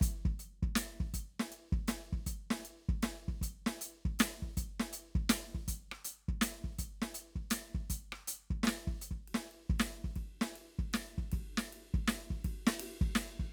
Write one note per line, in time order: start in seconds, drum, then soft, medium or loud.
0.01 closed hi-hat loud
0.01 kick medium
0.25 kick medium
0.39 closed hi-hat medium
0.62 kick medium
0.75 closed hi-hat medium
0.75 snare loud
1.00 kick medium
1.14 closed hi-hat medium
1.14 kick soft
1.39 snare medium
1.52 closed hi-hat medium
1.72 kick medium
1.88 closed hi-hat medium
1.88 snare medium
2.12 kick medium
2.17 snare soft
2.26 closed hi-hat medium
2.26 kick soft
2.50 snare medium
2.59 snare soft
2.65 closed hi-hat medium
2.89 kick medium
3.02 snare medium
3.02 closed hi-hat medium
3.28 kick medium
3.41 closed hi-hat medium
3.41 kick soft
3.66 snare medium
3.81 closed hi-hat medium
4.05 kick medium
4.19 closed hi-hat loud
4.19 snare loud
4.42 kick soft
4.57 closed hi-hat medium
4.57 kick medium
4.80 snare medium
4.93 closed hi-hat medium
5.15 kick medium
5.29 closed hi-hat loud
5.29 snare loud
5.55 kick soft
5.68 closed hi-hat medium
5.68 kick soft
5.91 cross-stick medium
6.05 closed hi-hat loud
6.28 kick medium
6.41 closed hi-hat loud
6.41 snare loud
6.64 kick soft
6.78 closed hi-hat medium
6.78 kick soft
7.02 snare medium
7.14 closed hi-hat medium
7.35 kick soft
7.50 closed hi-hat loud
7.50 snare medium
7.75 kick medium
7.90 closed hi-hat medium
7.90 kick soft
8.12 cross-stick medium
8.27 closed hi-hat loud
8.50 kick medium
8.63 snare loud
8.67 snare loud
8.87 kick medium
9.01 closed hi-hat medium
9.11 kick soft
9.28 ride soft
9.34 snare medium
9.51 ride soft
9.70 kick medium
9.79 snare loud
9.79 ride soft
10.04 kick soft
10.16 kick soft
10.16 ride soft
10.41 snare loud
10.55 ride soft
10.79 kick medium
10.93 snare medium
10.93 ride soft
11.18 kick medium
11.32 kick medium
11.32 ride medium
11.57 snare medium
11.73 ride medium
11.94 kick medium
12.08 snare loud
12.08 ride medium
12.30 kick soft
12.44 kick medium
12.44 ride medium
12.67 snare loud
12.80 ride loud
13.01 kick medium
13.15 snare loud
13.15 ride bell medium
13.39 kick medium